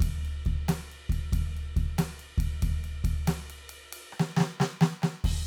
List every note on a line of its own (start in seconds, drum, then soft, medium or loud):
0.01 kick loud
0.01 ride loud
0.26 ride soft
0.46 kick loud
0.46 ride soft
0.69 snare loud
0.69 ride loud
0.92 ride soft
1.10 kick loud
1.10 ride medium
1.33 kick loud
1.33 ride loud
1.57 ride soft
1.77 kick loud
1.77 ride medium
1.99 snare loud
1.99 ride loud
2.20 ride medium
2.38 kick loud
2.38 ride medium
2.63 kick loud
2.63 ride loud
2.85 ride medium
3.05 kick loud
3.05 ride loud
3.28 snare loud
3.28 ride loud
3.50 ride medium
3.70 ride loud
3.93 ride loud
4.13 cross-stick medium
4.20 snare loud
4.37 snare loud
4.41 snare loud
4.61 snare loud
4.82 snare loud
5.03 cross-stick medium
5.03 snare loud
5.25 kick loud
5.25 crash loud